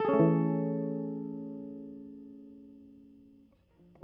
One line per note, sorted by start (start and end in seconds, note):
0.00 2.45 A4
0.05 3.50 C#4
0.05 3.44 G#4
0.20 2.63 E3